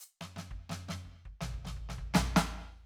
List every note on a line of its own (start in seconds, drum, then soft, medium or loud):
0.00 hi-hat pedal medium
0.21 snare medium
0.21 high tom medium
0.36 snare medium
0.36 high tom medium
0.51 kick soft
0.69 snare medium
0.69 high tom medium
0.89 snare medium
0.89 high tom medium
1.05 kick soft
1.25 kick soft
1.41 snare medium
1.41 floor tom loud
1.54 kick soft
1.65 snare medium
1.65 floor tom medium
1.76 kick soft
1.89 snare medium
1.89 floor tom medium
1.98 kick soft
2.14 snare loud
2.14 floor tom loud
2.36 snare loud